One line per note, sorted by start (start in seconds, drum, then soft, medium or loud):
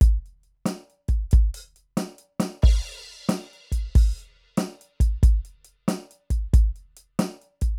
0.01 closed hi-hat loud
0.01 kick loud
0.26 closed hi-hat soft
0.43 closed hi-hat soft
0.66 snare loud
0.66 closed hi-hat loud
0.90 closed hi-hat soft
1.08 kick medium
1.08 closed hi-hat medium
1.31 kick loud
1.31 closed hi-hat loud
1.54 open hi-hat loud
1.59 hi-hat pedal soft
1.76 closed hi-hat soft
1.97 snare loud
1.97 closed hi-hat loud
2.18 closed hi-hat medium
2.40 snare loud
2.40 closed hi-hat loud
2.62 kick loud
2.62 crash loud
3.29 snare loud
3.29 closed hi-hat loud
3.53 closed hi-hat soft
3.72 kick medium
3.72 closed hi-hat loud
3.95 kick loud
3.95 open hi-hat loud
4.18 hi-hat pedal soft
4.18 open hi-hat soft
4.57 closed hi-hat loud
4.57 snare loud
4.81 closed hi-hat medium
5.00 kick loud
5.00 closed hi-hat loud
5.23 kick loud
5.23 closed hi-hat loud
5.45 closed hi-hat medium
5.65 closed hi-hat medium
5.88 snare loud
5.88 closed hi-hat loud
6.11 closed hi-hat medium
6.30 kick medium
6.30 closed hi-hat medium
6.54 kick loud
6.54 closed hi-hat loud
6.76 closed hi-hat soft
6.97 closed hi-hat medium
7.19 snare loud
7.19 closed hi-hat loud
7.41 closed hi-hat soft
7.61 kick medium
7.61 closed hi-hat loud